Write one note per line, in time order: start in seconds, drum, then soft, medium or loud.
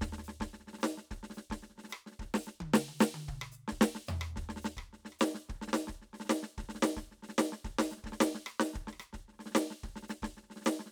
0.01 kick soft
0.01 snare medium
0.08 kick soft
0.12 snare soft
0.18 snare soft
0.24 hi-hat pedal soft
0.28 snare soft
0.40 kick soft
0.40 snare medium
0.46 kick soft
0.53 snare soft
0.60 snare soft
0.66 snare soft
0.73 snare soft
0.78 snare soft
0.78 hi-hat pedal soft
0.83 snare medium
0.97 snare soft
1.11 kick soft
1.11 snare soft
1.17 kick soft
1.23 snare soft
1.30 snare soft
1.30 hi-hat pedal soft
1.37 snare soft
1.50 kick soft
1.50 snare medium
1.62 snare soft
1.69 snare soft
1.76 snare soft
1.78 snare soft
1.84 snare soft
1.89 cross-stick medium
1.89 snare soft
1.89 hi-hat pedal soft
2.06 snare soft
2.11 snare soft
2.19 kick soft
2.19 snare soft
2.25 kick soft
2.34 snare medium
2.43 hi-hat pedal soft
2.47 snare soft
2.60 kick soft
2.60 high tom medium
2.73 snare loud
2.88 high tom soft
2.99 snare loud
2.99 hi-hat pedal soft
3.14 high tom medium
3.28 kick soft
3.28 mid tom soft
3.34 kick soft
3.41 cross-stick medium
3.52 hi-hat pedal soft
3.68 snare medium
3.72 kick soft
3.81 snare loud
3.95 snare soft
4.07 floor tom loud
4.07 hi-hat pedal soft
4.21 cross-stick medium
4.36 kick soft
4.36 snare soft
4.44 kick soft
4.49 snare soft
4.56 snare soft
4.62 snare medium
4.62 hi-hat pedal soft
4.77 kick soft
4.77 cross-stick medium
4.93 snare soft
4.98 snare soft
5.05 snare soft
5.12 cross-stick soft
5.19 snare loud
5.19 hi-hat pedal medium
5.34 snare soft
5.49 kick soft
5.49 snare soft
5.56 kick soft
5.61 snare soft
5.67 snare soft
5.73 snare loud
5.73 hi-hat pedal soft
5.87 kick soft
5.87 snare soft
5.94 kick soft
6.01 snare soft
6.07 snare soft
6.12 snare soft
6.20 snare soft
6.25 snare soft
6.29 snare loud
6.29 hi-hat pedal soft
6.43 snare soft
6.57 kick soft
6.57 snare soft
6.64 kick soft
6.69 snare soft
6.75 snare soft
6.82 snare loud
6.82 hi-hat pedal soft
6.96 kick soft
6.96 snare soft
7.11 snare soft
7.18 snare soft
7.22 snare soft
7.29 snare soft
7.38 snare loud
7.38 hi-hat pedal soft
7.52 snare soft
7.64 kick soft
7.64 snare soft
7.71 kick soft
7.78 snare loud
7.83 cross-stick soft
7.90 snare soft
7.90 hi-hat pedal soft
7.97 snare soft
8.03 kick soft
8.03 snare soft
8.06 kick soft
8.06 snare soft
8.12 snare soft
8.20 snare loud
8.34 snare soft
8.46 cross-stick medium
8.46 hi-hat pedal soft
8.60 snare loud
8.73 kick soft
8.73 snare soft
8.82 kick soft
8.87 snare soft
8.93 cross-stick soft
8.99 cross-stick medium
8.99 hi-hat pedal soft
9.13 kick soft
9.13 snare soft
9.28 snare soft
9.33 snare soft
9.37 snare soft
9.39 snare soft
9.46 snare soft
9.51 snare soft
9.55 snare loud
9.55 hi-hat pedal soft
9.70 snare soft
9.83 kick soft
9.83 snare soft
9.96 snare soft
10.02 snare soft
10.08 snare medium
10.08 hi-hat pedal soft
10.22 kick soft
10.22 snare medium
10.37 snare soft
10.43 snare soft
10.48 snare soft
10.50 snare soft
10.56 snare soft
10.61 snare soft
10.61 hi-hat pedal soft
10.66 snare loud
10.79 snare soft
10.86 snare soft